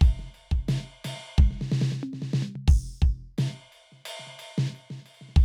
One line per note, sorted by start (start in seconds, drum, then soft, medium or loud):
0.02 kick loud
0.02 ride medium
0.20 snare soft
0.20 hi-hat pedal soft
0.35 ride soft
0.52 kick medium
0.69 snare loud
0.69 ride medium
1.05 snare medium
1.05 ride loud
1.39 kick loud
1.39 mid tom loud
1.52 snare soft
1.62 snare medium
1.72 snare loud
1.82 snare loud
1.93 snare medium
2.04 high tom loud
2.14 snare medium
2.23 snare medium
2.34 snare loud
2.43 mid tom medium
2.56 floor tom medium
2.68 kick loud
2.68 crash medium
3.03 kick loud
3.39 snare loud
3.39 ride medium
3.73 ride soft
3.93 snare soft
4.06 hi-hat pedal medium
4.06 ride loud
4.20 snare soft
4.28 snare soft
4.33 snare soft
4.40 ride medium
4.49 ride soft
4.59 snare loud
4.66 hi-hat pedal soft
4.76 ride soft
4.91 snare medium
5.06 ride soft
5.15 ride soft
5.22 snare soft
5.30 snare soft
5.37 kick loud
5.37 ride soft